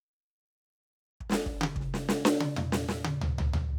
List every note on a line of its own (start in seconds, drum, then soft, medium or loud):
1.20 kick soft
1.29 snare loud
1.32 snare loud
1.46 kick medium
1.61 high tom loud
1.63 high tom loud
1.76 kick medium
1.80 snare soft
1.94 snare medium
2.09 snare loud
2.25 snare loud
2.40 high tom loud
2.56 mid tom loud
2.72 snare loud
2.88 snare loud
3.04 high tom loud
3.21 floor tom loud
3.38 floor tom loud
3.53 floor tom loud